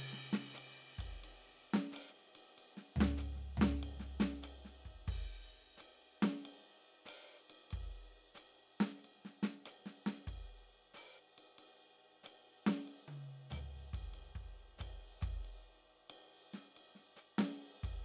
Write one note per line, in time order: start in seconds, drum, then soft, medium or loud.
0.13 snare soft
0.33 snare medium
0.55 hi-hat pedal loud
0.55 ride medium
0.99 kick soft
0.99 ride medium
1.24 ride medium
1.74 snare medium
1.93 hi-hat pedal loud
1.93 ride loud
2.36 ride medium
2.58 ride medium
2.77 snare soft
2.96 floor tom medium
3.01 snare medium
3.18 hi-hat pedal loud
3.18 ride medium
3.36 snare soft
3.58 floor tom medium
3.62 snare medium
3.80 hi-hat pedal soft
3.80 ride loud
4.00 snare soft
4.20 snare medium
4.43 hi-hat pedal medium
4.43 ride loud
4.65 snare soft
4.86 kick soft
5.08 kick medium
5.08 crash medium
5.78 hi-hat pedal medium
5.78 ride medium
6.23 snare medium
6.23 ride loud
6.46 ride medium
7.06 hi-hat pedal loud
7.06 ride medium
7.50 ride medium
7.71 kick soft
7.71 ride medium
8.35 hi-hat pedal loud
8.35 ride medium
8.81 snare medium
8.81 ride medium
8.97 hi-hat pedal soft
9.05 ride medium
9.25 snare soft
9.43 snare medium
9.66 hi-hat pedal loud
9.66 ride loud
9.86 snare soft
10.07 snare medium
10.07 ride medium
10.28 kick soft
10.28 ride medium
10.94 hi-hat pedal loud
10.94 ride medium
11.38 ride medium
11.59 ride medium
12.24 hi-hat pedal medium
12.24 ride medium
12.67 snare medium
12.67 ride medium
12.88 ride medium
13.08 high tom medium
13.51 floor tom soft
13.51 hi-hat pedal loud
13.51 ride medium
13.94 kick soft
13.94 ride medium
14.14 ride medium
14.36 kick soft
14.79 kick soft
14.79 hi-hat pedal loud
14.79 ride loud
15.22 open hi-hat medium
15.22 kick medium
15.22 ride medium
15.45 ride soft
16.10 ride loud
16.54 snare soft
16.54 ride medium
16.77 ride medium
16.96 snare soft
17.17 hi-hat pedal medium
17.39 snare medium
17.39 ride loud
17.84 kick soft
17.84 ride medium